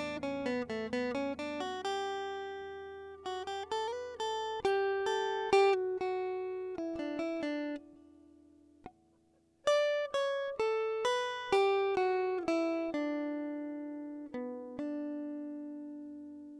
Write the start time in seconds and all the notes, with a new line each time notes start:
0.00 D4
0.25 C#4
0.47 B3
0.71 A3
0.94 B3
1.16 C#4
1.40 D4
1.62 F#4
1.86 G4
3.27 F#4
3.49 G4
3.73 A4
3.89 B4
4.21 A4
4.66 G4
5.08 A4
5.54 G4
5.74 F#4
6.03 F#4
6.80 E4
7.01 D4
7.21 E4
7.44 D4
9.69 D5
10.16 C#5
10.61 A4
11.06 B4
11.54 G4
11.97 F#4
12.49 E4
12.96 D4
14.36 B3
14.80 D4